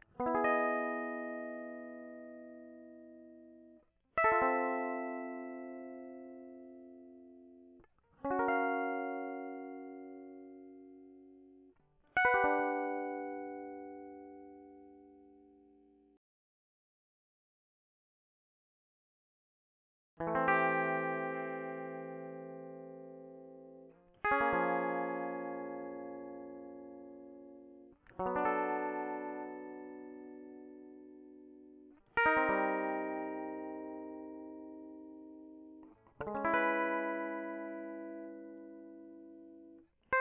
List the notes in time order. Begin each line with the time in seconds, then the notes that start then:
0.21 B3
0.27 E4
0.35 G#4
0.45 D#5
4.18 E5
4.25 A4
4.32 F4
4.42 C4
8.25 C#4
8.31 F#4
8.40 A#4
8.49 F5
12.17 F#5
12.25 B4
12.35 G4
12.45 D4
20.21 E3
20.28 A3
20.36 C4
24.32 C#4
24.42 A#3
24.54 F3
28.20 F#3
28.27 B3
28.36 D4
32.26 D#4
32.38 C4
32.50 G3
36.23 D3
36.28 G#3
36.35 C#4
36.45 E4